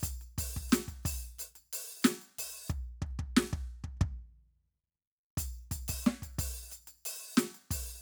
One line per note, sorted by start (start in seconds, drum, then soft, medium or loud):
0.01 kick medium
0.01 percussion medium
0.04 percussion loud
0.21 percussion soft
0.38 kick medium
0.38 percussion loud
0.57 kick medium
0.70 snare loud
0.70 percussion medium
0.73 percussion loud
0.88 kick soft
0.88 percussion medium
1.03 kick medium
1.03 percussion soft
1.06 percussion loud
1.39 percussion medium
1.39 percussion loud
1.56 percussion medium
1.73 percussion loud
2.03 snare loud
2.03 percussion medium
2.05 percussion loud
2.22 percussion soft
2.38 kick soft
2.38 percussion loud
2.68 kick medium
2.68 percussion medium
3.02 kick medium
3.07 kick soft
3.07 crash soft
3.19 kick medium
3.37 snare loud
3.53 kick medium
3.84 kick medium
3.97 kick soft
4.01 kick loud
5.38 kick medium
5.38 percussion loud
5.72 kick medium
5.72 percussion loud
5.88 kick medium
5.88 percussion loud
6.04 snare loud
6.04 percussion medium
6.23 kick soft
6.23 percussion medium
6.39 kick medium
6.39 percussion loud
6.71 percussion soft
6.71 percussion medium
6.88 percussion medium
7.06 percussion loud
7.35 snare loud
7.35 percussion medium
7.38 percussion loud
7.55 percussion medium
7.71 kick medium
7.71 percussion loud